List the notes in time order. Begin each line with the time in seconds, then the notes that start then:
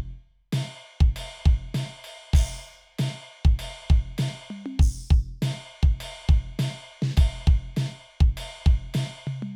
0.53 snare, ride bell
1.01 kick
1.17 ride bell
1.47 kick
1.75 snare, ride bell
2.05 ride
2.34 kick, ride bell, crash
3.00 snare, ride bell
3.46 kick
3.60 ride bell
3.91 kick
4.19 snare, ride bell
4.51 mid tom
4.67 high tom
4.80 kick, crash
5.11 kick, snare
5.43 snare, ride bell
5.84 kick
6.01 ride bell
6.30 kick, snare
6.60 snare, ride bell
7.03 snare
7.18 kick, ride bell
7.48 kick
7.77 snare, ride
8.21 kick
8.38 ride bell
8.67 kick, snare
8.95 snare, ride bell
9.28 floor tom
9.43 mid tom